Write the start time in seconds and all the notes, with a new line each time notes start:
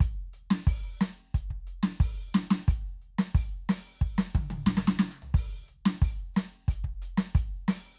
0.01 closed hi-hat, kick
0.34 closed hi-hat
0.51 snare
0.67 open hi-hat, kick
1.01 closed hi-hat, snare, hi-hat pedal
1.35 closed hi-hat, kick
1.51 kick
1.67 closed hi-hat
1.83 snare
2.01 open hi-hat, kick
2.35 snare, hi-hat pedal
2.51 snare
2.68 closed hi-hat, kick
3.02 closed hi-hat
3.19 snare
3.35 open hi-hat, kick
3.70 open hi-hat, snare
4.02 kick
4.19 snare
4.35 kick, high tom
4.51 high tom
4.67 kick, snare
4.78 snare
4.88 snare
4.99 snare
5.11 percussion
5.23 floor tom
5.34 open hi-hat, kick, hi-hat pedal
5.66 closed hi-hat, hi-hat pedal
5.86 snare
6.02 open hi-hat, kick
6.35 closed hi-hat, snare, hi-hat pedal
6.69 closed hi-hat, kick
6.85 kick
7.02 closed hi-hat
7.18 snare
7.35 closed hi-hat, kick
7.69 open hi-hat, snare